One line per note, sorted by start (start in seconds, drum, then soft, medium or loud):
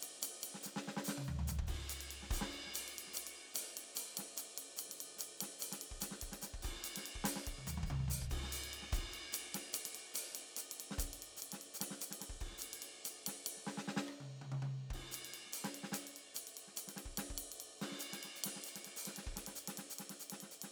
0.01 hi-hat pedal soft
0.01 ride medium
0.22 hi-hat pedal loud
0.22 ride loud
0.41 hi-hat pedal soft
0.41 ride loud
0.54 snare soft
0.63 snare soft
0.63 hi-hat pedal loud
0.76 snare medium
0.82 hi-hat pedal soft
0.88 snare soft
0.97 snare medium
1.04 snare medium
1.04 hi-hat pedal loud
1.18 high tom medium
1.24 hi-hat pedal soft
1.28 floor tom medium
1.39 floor tom medium
1.47 floor tom medium
1.47 hi-hat pedal loud
1.59 kick soft
1.67 kick soft
1.67 hi-hat pedal soft
1.67 crash soft
1.67 ride medium
1.89 hi-hat pedal loud
1.89 ride medium
2.01 ride medium
2.10 hi-hat pedal soft
2.10 ride medium
2.22 snare soft
2.31 kick medium
2.31 hi-hat pedal loud
2.31 ride medium
2.41 snare medium
2.41 ride soft
2.52 hi-hat pedal soft
2.52 ride soft
2.66 snare soft
2.74 snare soft
2.74 hi-hat pedal loud
2.74 ride loud
2.88 ride medium
2.93 hi-hat pedal soft
2.98 ride medium
3.07 snare soft
3.14 hi-hat pedal loud
3.14 ride loud
3.27 ride medium
3.32 hi-hat pedal soft
3.54 hi-hat pedal loud
3.54 ride loud
3.73 hi-hat pedal soft
3.77 ride medium
3.95 hi-hat pedal loud
3.95 ride loud
4.14 hi-hat pedal soft
4.14 ride loud
4.18 snare soft
4.37 hi-hat pedal loud
4.37 ride medium
4.56 hi-hat pedal soft
4.56 ride medium
4.77 hi-hat pedal medium
4.77 ride loud
4.89 snare soft
4.89 ride medium
4.97 hi-hat pedal soft
4.97 ride medium
5.16 snare soft
5.16 hi-hat pedal loud
5.21 ride medium
5.37 hi-hat pedal soft
5.37 ride loud
5.42 snare soft
5.59 hi-hat pedal medium
5.59 ride loud
5.72 snare soft
5.72 ride medium
5.77 hi-hat pedal soft
5.81 ride medium
5.91 kick soft
6.01 snare soft
6.01 hi-hat pedal loud
6.01 ride loud
6.11 snare soft
6.20 kick soft
6.20 hi-hat pedal soft
6.20 ride medium
6.32 snare soft
6.32 ride medium
6.42 snare soft
6.42 hi-hat pedal loud
6.42 ride medium
6.54 kick soft
6.62 kick soft
6.62 hi-hat pedal medium
6.62 ride medium
6.75 snare soft
6.84 hi-hat pedal medium
6.84 ride medium
6.96 snare soft
6.96 ride medium
7.03 hi-hat pedal soft
7.03 ride medium
7.15 kick soft
7.24 snare medium
7.24 hi-hat pedal loud
7.24 ride medium
7.36 snare soft
7.45 kick soft
7.45 hi-hat pedal soft
7.45 ride medium
7.58 high tom soft
7.67 floor tom medium
7.67 hi-hat pedal loud
7.77 floor tom medium
7.83 kick soft
7.83 hi-hat pedal soft
7.90 high tom medium
8.00 floor tom soft
8.08 floor tom medium
8.08 hi-hat pedal loud
8.22 kick soft
8.30 kick soft
8.30 hi-hat pedal soft
8.30 ride medium
8.43 snare soft
8.52 hi-hat pedal loud
8.52 ride medium
8.64 ride medium
8.73 hi-hat pedal soft
8.73 ride medium
8.82 snare soft
8.92 kick medium
8.92 hi-hat pedal medium
8.92 ride medium
9.11 hi-hat pedal soft
9.11 ride medium
9.33 hi-hat pedal loud
9.33 ride loud
9.54 snare soft
9.54 ride loud
9.73 hi-hat pedal loud
9.73 ride loud
9.85 snare soft
9.85 ride medium
9.95 ride medium
10.14 hi-hat pedal loud
10.14 ride loud
10.31 snare soft
10.31 ride medium
10.57 hi-hat pedal loud
10.57 ride medium
10.71 ride medium
10.80 ride medium
10.91 snare soft
10.98 kick soft
10.98 hi-hat pedal loud
10.98 ride medium
11.13 ride medium
11.22 ride medium
11.37 hi-hat pedal medium
11.42 ride medium
11.52 snare soft
11.52 ride medium
11.61 ride medium
11.74 hi-hat pedal loud
11.81 snare soft
11.81 ride loud
11.90 snare soft
12.01 hi-hat pedal loud
12.01 ride medium
12.11 snare soft
12.11 ride medium
12.21 snare soft
12.21 ride medium
12.29 kick soft
12.41 kick soft
12.41 ride medium
12.51 snare soft
12.58 hi-hat pedal medium
12.62 ride medium
12.73 ride medium
12.82 ride medium
13.05 hi-hat pedal loud
13.05 ride medium
13.26 snare soft
13.26 ride loud
13.46 ride loud
13.57 snare soft
13.67 snare soft
13.77 snare soft
13.88 snare medium
13.96 snare medium
14.08 cross-stick soft
14.20 high tom medium
14.41 high tom medium
14.52 high tom medium
14.62 high tom medium
14.90 kick soft
14.90 ride medium
15.11 hi-hat pedal medium
15.11 ride medium
15.25 ride medium
15.34 ride medium
15.46 snare soft
15.53 hi-hat pedal medium
15.53 ride medium
15.64 snare medium
15.64 ride medium
15.75 ride medium
15.83 snare soft
15.92 snare soft
15.92 hi-hat pedal medium
15.92 ride medium
16.07 ride medium
16.13 hi-hat pedal soft
16.13 ride medium
16.35 hi-hat pedal medium
16.35 ride medium
16.47 ride medium
16.57 ride medium
16.67 snare soft
16.76 hi-hat pedal medium
16.76 ride medium
16.87 snare soft
16.87 ride medium
16.96 snare soft
16.96 ride medium
17.05 kick soft
17.17 snare soft
17.17 ride loud
17.30 kick soft
17.38 ride loud
17.52 ride medium
17.60 ride medium
17.78 snare medium
17.78 hi-hat pedal soft
17.78 ride medium
17.91 snare soft
17.99 hi-hat pedal medium
17.99 ride medium
18.13 snare soft
18.13 ride medium
18.23 snare soft
18.23 ride medium
18.36 hi-hat pedal medium
18.44 snare soft
18.44 ride loud
18.56 snare soft
18.64 hi-hat pedal medium
18.64 ride medium
18.75 snare soft
18.75 ride medium
18.85 snare soft
18.85 ride medium
18.96 hi-hat pedal loud
19.05 snare soft
19.05 ride medium
19.16 snare soft
19.16 ride medium
19.27 kick soft
19.36 snare soft
19.36 ride medium
19.47 snare soft
19.47 ride medium
19.56 hi-hat pedal loud
19.68 snare soft
19.68 ride medium
19.77 snare soft
19.77 ride medium
19.90 hi-hat pedal loud
19.99 snare soft
19.99 ride medium
20.10 snare soft
20.10 ride medium
20.20 hi-hat pedal medium
20.30 snare soft
20.30 ride medium
20.40 snare soft
20.40 ride medium
20.51 hi-hat pedal medium
20.62 snare soft
20.62 ride medium